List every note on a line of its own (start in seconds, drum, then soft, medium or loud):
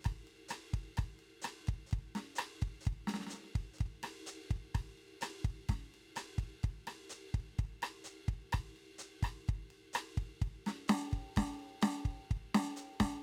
0.01 hi-hat pedal soft
0.01 ride medium
0.05 kick soft
0.05 cross-stick medium
0.12 kick soft
0.27 ride soft
0.49 cross-stick medium
0.49 hi-hat pedal medium
0.49 ride medium
0.74 kick soft
0.74 ride soft
0.97 kick soft
0.97 cross-stick medium
0.97 ride medium
1.04 kick soft
1.16 snare soft
1.16 ride soft
1.42 cross-stick medium
1.42 hi-hat pedal medium
1.42 ride medium
1.60 snare soft
1.67 kick soft
1.67 ride soft
1.74 kick soft
1.87 hi-hat pedal soft
1.91 kick soft
1.91 ride soft
1.98 kick soft
2.15 snare soft
2.15 ride medium
2.36 cross-stick medium
2.36 hi-hat pedal medium
2.36 ride medium
2.62 kick soft
2.62 ride soft
2.67 kick soft
2.81 hi-hat pedal soft
2.86 kick soft
2.86 ride soft
2.92 kick soft
3.07 snare medium
3.07 ride medium
3.14 snare soft
3.20 snare soft
3.27 snare soft
3.27 hi-hat pedal medium
3.33 snare soft
3.33 ride soft
3.39 snare soft
3.44 snare soft
3.51 snare soft
3.55 kick soft
3.55 snare soft
3.55 ride soft
3.60 kick soft
3.60 snare soft
3.74 hi-hat pedal soft
3.79 kick soft
3.79 ride soft
3.86 kick soft
4.03 cross-stick medium
4.03 ride medium
4.26 hi-hat pedal medium
4.26 ride soft
4.51 kick soft
4.51 ride soft
4.56 kick soft
4.75 kick soft
4.75 cross-stick medium
4.75 ride medium
4.80 kick soft
4.98 ride soft
5.21 cross-stick medium
5.21 hi-hat pedal medium
5.21 ride medium
5.45 kick soft
5.45 ride soft
5.50 kick soft
5.69 kick soft
5.69 snare medium
5.69 ride medium
5.75 kick soft
5.94 ride soft
6.16 cross-stick medium
6.16 hi-hat pedal medium
6.16 ride medium
6.38 kick soft
6.38 ride soft
6.43 kick soft
6.63 kick soft
6.63 ride soft
6.69 kick soft
6.87 cross-stick medium
6.87 ride medium
7.10 hi-hat pedal medium
7.10 ride soft
7.34 kick soft
7.34 ride soft
7.39 kick soft
7.53 snare soft
7.59 kick soft
7.59 ride soft
7.65 kick soft
7.82 cross-stick medium
7.82 ride medium
8.04 hi-hat pedal medium
8.04 ride soft
8.28 kick soft
8.28 ride soft
8.33 kick soft
8.53 kick soft
8.53 cross-stick medium
8.53 ride medium
8.60 kick soft
8.76 ride soft
8.99 hi-hat pedal medium
8.99 ride soft
9.23 kick soft
9.23 cross-stick medium
9.23 ride medium
9.28 kick soft
9.48 kick soft
9.48 ride soft
9.55 kick soft
9.61 snare soft
9.70 ride soft
9.93 cross-stick medium
9.93 hi-hat pedal medium
9.93 ride medium
10.17 kick soft
10.17 ride soft
10.23 kick soft
10.42 kick soft
10.42 ride soft
10.47 kick soft
10.67 snare medium
10.67 ride medium
10.88 snare loud
10.88 hi-hat pedal medium
10.88 ride medium
11.12 kick soft
11.12 ride soft
11.18 kick soft
11.32 hi-hat pedal soft
11.37 kick soft
11.37 snare medium
11.37 ride medium
11.43 kick soft
11.60 ride soft
11.82 snare loud
11.82 hi-hat pedal medium
11.82 ride medium
12.05 kick soft
12.05 ride soft
12.10 kick soft
12.31 kick soft
12.31 ride soft
12.37 kick soft
12.55 snare loud
12.55 ride medium
12.63 snare soft
12.76 hi-hat pedal medium
12.76 ride soft
13.00 kick soft
13.00 snare loud
13.00 ride medium
13.06 kick soft